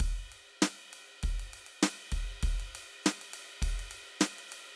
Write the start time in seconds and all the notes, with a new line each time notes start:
0.02 kick, ride
0.32 ride
0.62 snare, ride
0.93 ride
1.23 kick, ride
1.40 ride
1.53 hi-hat pedal, ride
1.66 ride
1.83 snare, ride
2.12 kick, ride
2.43 kick, ride
2.60 ride
2.75 hi-hat pedal, ride
3.03 snare, hi-hat pedal, ride
3.21 ride
3.32 hi-hat pedal, ride
3.62 kick, ride
3.79 ride
3.90 hi-hat pedal, ride
4.20 snare, hi-hat pedal, ride
4.38 ride
4.48 hi-hat pedal, ride